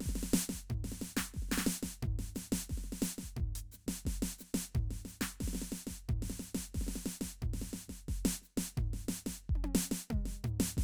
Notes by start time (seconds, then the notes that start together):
0.01 snare
0.06 kick, snare
0.16 snare
0.23 snare
0.34 snare, hi-hat pedal
0.50 kick, snare
0.70 kick, floor tom
0.85 snare
0.92 snare
1.02 snare, hi-hat pedal
1.17 kick, snare
1.34 kick, snare
1.43 snare
1.49 snare
1.52 snare
1.58 snare
1.61 snare
1.67 snare, hi-hat pedal
1.83 kick, snare
2.03 kick, floor tom
2.19 snare
2.35 snare, hi-hat pedal
2.53 kick, snare
2.70 kick, snare
2.78 snare
2.84 snare
2.93 snare
3.02 snare, hi-hat pedal
3.19 snare
3.23 kick
3.37 kick, floor tom
3.56 closed hi-hat
3.72 snare, hi-hat pedal
3.87 kick, snare
4.06 kick, snare
4.23 snare
4.39 snare, hi-hat pedal
4.54 kick, snare
4.75 kick, floor tom
4.91 snare
5.05 snare, hi-hat pedal
5.21 kick, snare
5.41 kick, snare
5.48 snare
5.54 snare
5.55 snare
5.62 snare
5.72 snare, hi-hat pedal
5.87 kick, snare
6.09 kick, floor tom
6.23 snare
6.30 snare
6.40 snare, hi-hat pedal
6.55 kick, snare
6.75 kick, snare
6.81 snare
6.87 snare
6.96 snare
7.06 snare, hi-hat pedal
7.21 kick, snare
7.42 kick, floor tom
7.54 snare
7.62 snare
7.73 snare, hi-hat pedal
7.89 kick, snare
8.09 kick, snare
8.25 snare
8.42 snare, hi-hat pedal
8.57 kick, snare
8.78 kick, floor tom
8.94 snare
9.09 snare
9.14 hi-hat pedal
9.27 kick, snare
9.50 kick
9.56 high tom
9.64 high tom
9.75 snare
9.81 hi-hat pedal
9.92 snare
10.11 kick, mid tom
10.26 snare
10.45 floor tom, hi-hat pedal
10.60 snare
10.78 kick, snare